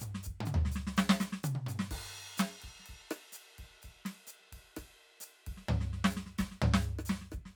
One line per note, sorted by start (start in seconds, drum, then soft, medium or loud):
0.01 hi-hat pedal medium
0.01 mid tom medium
0.15 snare medium
0.24 kick soft
0.24 hi-hat pedal medium
0.41 mid tom loud
0.46 hi-hat pedal medium
0.46 high tom loud
0.55 floor tom loud
0.66 snare medium
0.72 hi-hat pedal medium
0.76 snare medium
0.88 snare medium
0.97 snare loud
0.97 hi-hat pedal medium
1.10 snare loud
1.21 snare loud
1.21 hi-hat pedal medium
1.33 snare medium
1.44 hi-hat pedal loud
1.44 high tom loud
1.56 high tom medium
1.67 hi-hat pedal medium
1.67 mid tom medium
1.80 snare medium
1.91 kick soft
1.91 cross-stick soft
1.91 crash medium
1.98 kick soft
2.38 snare medium
2.38 hi-hat pedal loud
2.38 ride medium
2.63 kick soft
2.63 ride medium
2.70 kick soft
2.80 snare soft
2.87 kick soft
2.87 hi-hat pedal soft
2.87 ride medium
2.95 kick soft
3.12 cross-stick medium
3.12 ride medium
3.33 hi-hat pedal medium
3.37 ride medium
3.59 kick soft
3.59 ride medium
3.64 kick soft
3.83 kick soft
3.83 hi-hat pedal soft
3.83 ride medium
3.90 kick soft
4.06 snare medium
4.06 ride medium
4.28 hi-hat pedal medium
4.41 snare soft
4.45 snare soft
4.53 kick soft
4.53 ride medium
4.58 kick soft
4.77 kick soft
4.77 cross-stick medium
4.77 hi-hat pedal soft
4.77 ride medium
4.83 kick soft
5.21 hi-hat pedal loud
5.21 ride medium
5.47 kick soft
5.47 ride medium
5.54 kick soft
5.54 snare soft
5.69 floor tom loud
5.81 snare soft
5.94 snare soft
6.05 snare loud
6.11 hi-hat pedal medium
6.17 snare medium
6.27 snare soft
6.39 kick soft
6.39 snare loud
6.39 hi-hat pedal medium
6.46 kick soft
6.52 snare soft
6.63 floor tom loud
6.75 snare loud
6.82 hi-hat pedal soft
6.88 snare soft
7.00 cross-stick medium
7.06 hi-hat pedal medium
7.10 snare loud
7.22 snare soft
7.32 kick soft
7.32 cross-stick medium
7.32 hi-hat pedal soft
7.46 snare soft